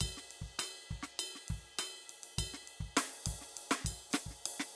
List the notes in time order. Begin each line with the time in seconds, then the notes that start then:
0.01 kick, hi-hat pedal, ride bell
0.09 kick
0.11 kick
0.18 snare
0.31 ride
0.42 kick
0.59 cross-stick, hi-hat pedal, ride bell
0.89 kick, ride
1.03 snare
1.20 ride bell
1.36 snare
1.49 kick, ride
1.57 kick
1.79 cross-stick, hi-hat pedal, ride bell
2.10 ride
2.24 ride
2.39 kick, ride bell
2.45 kick
2.54 snare
2.63 snare
2.68 ride
2.81 kick
2.87 kick
2.97 snare, hi-hat pedal, ride
3.26 kick, ride
3.34 kick
3.42 snare
3.57 ride
3.71 snare
3.81 kick, snare
3.87 ride bell
3.92 kick
4.11 snare, hi-hat pedal, ride
4.27 kick
4.31 snare
4.46 ride
4.60 snare